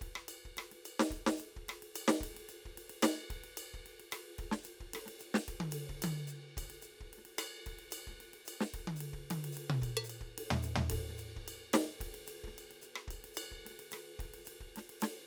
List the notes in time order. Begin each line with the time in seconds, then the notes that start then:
0.01 kick, ride
0.07 kick
0.15 cross-stick
0.28 hi-hat pedal, ride bell
0.45 kick
0.57 cross-stick, ride
0.71 snare, ride
0.85 hi-hat pedal, ride bell
0.99 snare
1.10 kick, ride
1.16 kick
1.26 snare
1.37 hi-hat pedal, ride
1.56 kick
1.69 cross-stick, ride
1.82 ride
1.94 hi-hat pedal, ride bell
2.08 snare
2.20 kick, ride
2.33 snare, ride
2.38 snare
2.48 hi-hat pedal, ride
2.65 kick
2.70 kick
2.77 ride
2.90 ride
3.02 snare, hi-hat pedal, ride bell
3.30 kick, ride
3.44 ride
3.57 hi-hat pedal, ride bell
3.74 kick
3.86 ride
4.00 ride
4.11 cross-stick, hi-hat pedal, ride
4.38 kick, ride
4.44 kick
4.51 snare
4.63 hi-hat pedal, ride
4.80 kick
4.94 cross-stick, ride
5.06 snare, ride
5.19 hi-hat pedal, ride
5.34 snare
5.48 kick, ride
5.60 open hi-hat, high tom
5.71 hi-hat pedal, ride
5.89 kick
5.94 kick
6.02 high tom, ride bell
6.27 hi-hat pedal
6.57 kick, ride bell
6.63 kick
6.70 ride
6.82 hi-hat pedal, ride
7.00 kick
7.13 ride
7.18 snare
7.25 ride
7.38 cross-stick, hi-hat pedal, ride bell
7.65 kick, snare, ride
7.79 ride
7.90 hi-hat pedal, ride bell
8.07 kick, snare
8.14 snare
8.18 snare
8.20 snare, ride
8.33 ride
8.45 hi-hat pedal, ride bell
8.61 snare
8.74 kick, ride
8.79 kick
8.87 high tom
8.96 hi-hat pedal
9.01 ride
9.13 kick
9.19 kick
9.30 high tom, ride
9.44 ride
9.52 hi-hat pedal
9.57 ride
9.70 mid tom
9.82 kick, ride bell
9.87 kick
9.97 percussion
10.04 hi-hat pedal
10.10 ride bell
10.21 kick
10.38 ride
10.50 floor tom
10.62 hi-hat pedal, ride
10.76 floor tom
10.90 kick, ride
10.98 kick
11.09 snare
11.16 snare, hi-hat pedal
11.19 snare, ride
11.23 snare
11.36 kick, snare
11.41 kick
11.48 ride bell
11.73 snare, hi-hat pedal, ride
12.00 kick, snare, ride
12.05 kick, snare
12.11 snare, ride
12.15 snare
12.26 hi-hat pedal, ride
12.44 kick, snare
12.53 snare
12.56 snare, ride bell
12.71 ride
12.81 hi-hat pedal, ride
12.96 cross-stick
13.08 kick, ride bell
13.13 kick
13.24 ride
13.34 hi-hat pedal, ride bell
13.51 kick
13.65 snare, ride
13.70 snare
13.79 ride
13.91 cross-stick, hi-hat pedal, ride
14.17 kick, snare, ride
14.25 kick
14.32 snare, ride
14.38 snare
14.45 hi-hat pedal, ride
14.60 kick
14.76 snare, ride
14.89 ride
15.00 snare, hi-hat pedal, ride